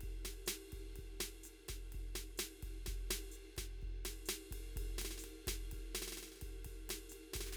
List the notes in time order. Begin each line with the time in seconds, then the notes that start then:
0.01 kick, ride
0.25 snare, ride
0.46 snare, hi-hat pedal, ride
0.72 kick, ride
0.87 snare
0.91 snare
0.96 kick, ride
1.20 snare, ride
1.44 hi-hat pedal, ride
1.69 kick, snare, ride
1.92 kick, ride
2.15 snare, ride
2.38 snare, hi-hat pedal, ride
2.63 kick, ride
2.86 kick, snare, ride
2.93 kick
3.11 snare, ride
3.32 hi-hat pedal, ride
3.57 kick, snare, ride
3.82 kick, ride
4.05 snare, ride
4.26 snare, hi-hat pedal, ride
4.51 kick, ride
4.76 kick, ride
4.82 kick
4.98 snare, ride
5.05 snare
5.11 snare
5.18 snare, hi-hat pedal
5.24 snare, ride
5.47 kick, snare, ride
5.52 kick
5.72 kick, ride
5.78 kick
5.95 snare, ride
6.02 snare
6.08 snare
6.12 snare, hi-hat pedal
6.17 snare, ride
6.23 snare
6.28 snare
6.32 snare
6.36 snare
6.39 snare, ride
6.42 kick, snare
6.50 snare
6.53 snare
6.55 snare
6.58 snare
6.65 kick, ride
6.89 snare, ride
7.10 hi-hat pedal, ride
7.34 kick, snare, ride
7.41 snare
7.47 snare
7.53 snare